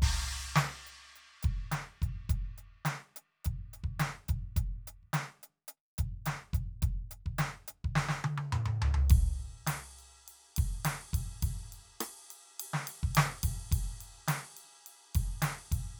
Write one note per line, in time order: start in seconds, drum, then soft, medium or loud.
0.02 kick medium
0.02 crash loud
0.30 closed hi-hat soft
0.56 closed hi-hat medium
0.56 snare loud
0.87 closed hi-hat medium
1.16 closed hi-hat medium
1.43 kick medium
1.43 closed hi-hat loud
1.72 snare medium
1.72 closed hi-hat loud
2.02 kick medium
2.02 closed hi-hat medium
2.29 kick medium
2.29 closed hi-hat loud
2.58 closed hi-hat medium
2.85 snare medium
2.85 closed hi-hat loud
3.16 closed hi-hat loud
3.45 kick medium
3.45 closed hi-hat loud
3.73 open hi-hat medium
3.84 kick soft
4.00 snare loud
4.00 closed hi-hat loud
4.28 kick medium
4.28 closed hi-hat loud
4.56 closed hi-hat loud
4.56 kick medium
4.87 closed hi-hat loud
5.03 kick soft
5.13 snare loud
5.13 closed hi-hat loud
5.43 closed hi-hat medium
5.68 closed hi-hat loud
5.98 kick medium
5.98 closed hi-hat loud
6.26 snare medium
6.26 closed hi-hat loud
6.53 kick medium
6.53 closed hi-hat medium
6.82 closed hi-hat loud
6.82 kick medium
7.11 closed hi-hat loud
7.26 kick soft
7.38 snare loud
7.38 closed hi-hat loud
7.68 closed hi-hat loud
7.84 kick medium
7.96 snare loud
8.09 snare medium
8.24 high tom loud
8.38 high tom medium
8.53 mid tom loud
8.66 mid tom loud
8.82 floor tom loud
8.94 floor tom loud
9.10 kick loud
9.10 ride loud
9.67 snare medium
9.67 ride loud
9.99 ride soft
10.28 ride medium
10.57 kick medium
10.57 ride loud
10.85 snare medium
10.85 ride loud
11.13 kick medium
11.13 ride medium
11.43 kick medium
11.43 ride loud
11.72 ride medium
12.01 cross-stick medium
12.01 ride loud
12.31 ride medium
12.60 ride loud
12.74 snare medium
12.87 ride loud
13.03 kick medium
13.15 snare loud
13.15 ride loud
13.43 kick medium
13.43 ride loud
13.72 kick medium
13.72 ride loud
14.01 ride medium
14.28 snare loud
14.28 ride loud
14.57 ride medium
14.86 ride medium
15.15 kick medium
15.15 ride loud
15.42 snare loud
15.42 ride loud
15.72 kick medium
15.72 ride medium